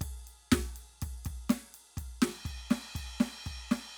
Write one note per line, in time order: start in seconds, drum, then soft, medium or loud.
0.01 kick medium
0.01 ride loud
0.27 ride medium
0.52 kick loud
0.52 snare loud
0.52 ride loud
0.76 ride medium
1.02 kick medium
1.02 ride loud
1.25 kick medium
1.25 ride medium
1.50 snare loud
1.50 ride loud
1.74 ride medium
1.97 kick medium
1.97 ride medium
2.22 snare loud
2.22 ride medium
2.45 kick medium
2.45 ride medium
2.70 snare loud
2.70 ride medium
2.95 kick medium
2.95 ride medium
3.20 snare loud
3.20 ride medium
3.46 kick medium
3.46 ride soft
3.71 snare loud
3.71 ride medium